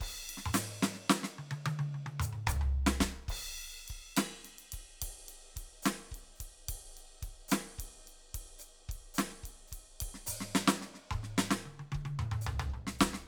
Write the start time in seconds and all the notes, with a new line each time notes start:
0.01 kick, snare, crash
0.30 ride
0.38 snare
0.47 mid tom
0.54 snare, hi-hat pedal
0.83 snare
0.95 snare
1.10 snare
1.24 snare
1.39 high tom
1.52 high tom
1.67 high tom
1.80 high tom
1.95 high tom
2.07 high tom
2.20 hi-hat pedal, mid tom
2.34 mid tom
2.47 kick, hi-hat pedal, floor tom
2.62 floor tom
2.75 kick
2.87 snare
3.01 kick, snare
3.29 kick, crash
3.89 kick, ride
4.18 snare, hi-hat pedal, ride bell
4.45 snare, hi-hat pedal, ride
4.59 ride
4.73 kick, ride
5.03 kick, ride
5.09 kick
5.29 ride
5.55 kick, snare, ride
5.59 snare
5.83 snare, hi-hat pedal, ride
6.12 kick, ride
6.31 snare
6.35 snare, hi-hat pedal
6.41 kick, ride
6.69 kick, ride
6.76 kick
6.98 ride
7.23 kick, ride
7.29 kick
7.49 snare, hi-hat pedal, ride
7.79 kick, ride
8.01 snare
8.06 snare, ride
8.35 kick, ride
8.60 hi-hat pedal, ride
8.90 kick, ride
8.96 kick
9.15 hi-hat pedal
9.19 snare, ride
9.30 snare
9.44 kick, ride
9.66 snare, hi-hat pedal
9.73 kick, ride
10.01 kick, ride
10.09 kick
10.15 snare
10.27 hi-hat pedal, mid tom
10.41 snare
10.56 snare
10.68 snare
10.82 snare
10.95 snare
11.12 kick, mid tom
11.20 kick, snare
11.39 snare
11.52 snare
11.66 high tom
11.80 high tom
11.93 kick, high tom
12.02 kick
12.06 closed hi-hat, high tom
12.16 kick, mid tom
12.32 mid tom
12.42 hi-hat pedal
12.47 floor tom
12.60 floor tom
12.70 kick
12.74 floor tom
12.88 snare
13.00 kick, snare, hi-hat pedal
13.14 snare